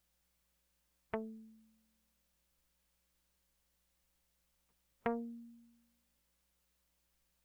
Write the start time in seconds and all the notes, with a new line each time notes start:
1.14 A3
5.07 A#3